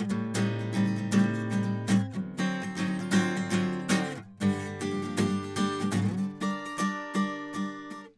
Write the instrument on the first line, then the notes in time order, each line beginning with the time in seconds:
acoustic guitar
0.00 A2 G3
0.10 A2
0.35 A2 D3 G3 C4 D#4
0.75 A2 C#3 G3 C4 D#4
0.87 C4 D#4
0.98 G3 C4 D#4
1.13 A2 C#3 G3 C4 D#4
1.51 A2 C#3 G3 C4 D#4
1.66 C4 D#4
1.89 A2 C#3 G3 C4 D#4
2.15 D3 F#3 C4
2.39 D3 F#3 C4 D4
2.62 D3 F#3 C4
2.78 D3 F#3 C4 D#4
2.89 C4 D#4
3.02 C4 F4
3.13 D#3 F#3 C4 F4
3.37 D3 F#3 C4 F4
3.52 D3 F#3 C4 F4
3.90 D3 F#3 C4 D#4
4.42 G2 D3 G3 D4
4.69 D4
4.82 D3 D4 G4
4.94 F3
5.03 F3 D4 G4
5.18 G2 D3 F3 D4 G4
5.31 G3
5.36 G3
5.40 D4
5.44 G3
5.57 D3 G3 D4 G4
5.80 G2 D4 G4
5.92 C#3 F#3 D#4
6.10 D3 G3
6.15 D5
6.42 G3 D4 A#4 D5
6.66 A#4 D5
6.79 D3 G3 D4 A#4 D5
7.15 D3 G3 D4 A#4 D5
7.54 D3 G3 D4 A#4 D5
7.93 A#4 D5